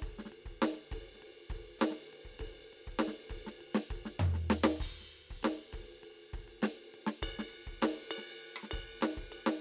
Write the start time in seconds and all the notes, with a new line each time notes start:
0.01 kick, hi-hat pedal, ride
0.10 kick
0.19 snare
0.26 snare
0.32 ride
0.46 kick
0.62 snare, hi-hat pedal, ride
0.73 snare
0.92 kick, ride
0.99 kick
1.15 snare
1.22 snare, ride
1.50 kick, ride
1.57 kick
1.79 snare, hi-hat pedal, ride
1.91 snare
2.13 ride
2.25 kick
2.33 snare
2.39 kick, hi-hat pedal, ride
2.47 kick
2.73 ride
2.87 kick
2.99 snare, hi-hat pedal, ride
3.08 snare
3.30 kick, ride
3.37 kick
3.47 snare
3.61 ride
3.75 snare
3.91 kick, ride
3.97 kick
4.06 snare
4.19 floor tom, hi-hat pedal
4.34 snare
4.50 snare
4.64 snare
4.76 snare
4.80 kick, hi-hat pedal, crash
4.91 kick
5.01 snare
5.31 kick
5.43 snare, hi-hat pedal, ride
5.73 kick, ride
5.80 kick, snare
6.04 ride
6.34 kick, snare, ride
6.40 kick
6.48 ride
6.62 snare, hi-hat pedal, ride
6.94 ride
7.07 snare
7.21 kick, hi-hat pedal, ride bell
7.28 kick
7.39 snare
7.49 cross-stick
7.54 ride
7.67 kick
7.73 kick
7.82 snare, hi-hat pedal, ride
8.11 ride bell
8.18 snare
8.42 ride
8.56 cross-stick
8.63 snare
8.71 kick, ride bell
8.80 kick
9.02 snare, hi-hat pedal, ride
9.16 kick, snare
9.23 kick
9.32 hi-hat pedal, ride bell
9.47 snare